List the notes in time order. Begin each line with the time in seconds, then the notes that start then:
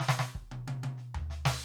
0.00 snare
0.09 snare
0.19 snare
0.35 kick
0.52 high tom
0.68 high tom
0.83 high tom
0.97 snare
1.15 floor tom
1.30 snare
1.45 snare, crash